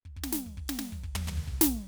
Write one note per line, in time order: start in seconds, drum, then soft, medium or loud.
0.05 kick soft
0.16 kick soft
0.23 snare medium
0.23 ride soft
0.32 snare medium
0.36 ride soft
0.46 kick soft
0.57 kick soft
0.68 snare medium
0.68 ride soft
0.79 snare medium
0.79 ride soft
0.92 kick soft
1.03 kick soft
1.15 floor tom loud
1.15 high tom medium
1.27 floor tom medium
1.27 high tom medium
1.37 kick soft
1.47 kick soft
1.61 snare loud
1.61 ride medium